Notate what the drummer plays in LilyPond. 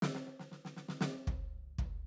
\new DrumStaff \drummode { \time 4/4 \tempo 4 = 116 <sn hhp>16 sn16 sn16 sn16 sn16 sn16 sn16 sn16 sn8 <bd tomfh>8 r8 <bd tomfh>8 | }